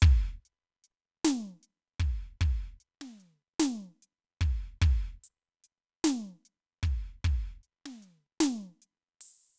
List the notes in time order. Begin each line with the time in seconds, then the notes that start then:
0.01 kick, hi-hat pedal
0.07 closed hi-hat
0.46 closed hi-hat
0.84 closed hi-hat
1.25 snare, closed hi-hat
1.64 closed hi-hat
2.00 kick, closed hi-hat
2.42 kick, closed hi-hat
2.81 closed hi-hat
3.02 snare
3.21 closed hi-hat
3.60 closed hi-hat, snare
4.03 closed hi-hat
4.42 kick, closed hi-hat
4.82 kick, closed hi-hat
5.24 closed hi-hat
5.65 closed hi-hat
6.05 snare, closed hi-hat
6.46 closed hi-hat
6.83 kick, closed hi-hat
7.25 kick, closed hi-hat
7.64 closed hi-hat
7.86 snare
8.03 closed hi-hat
8.41 closed hi-hat, snare
8.83 closed hi-hat
9.21 open hi-hat